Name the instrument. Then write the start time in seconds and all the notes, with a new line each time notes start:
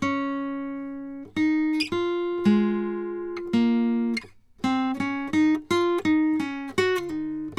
acoustic guitar
0.04 C#4
1.38 D#4
1.94 F4
2.47 G#3
3.55 A#3
4.66 C4
5.02 C#4
5.35 D#4
5.72 F4
6.07 D#4
6.41 C#4
6.79 F#4
6.98 F4
7.11 D#4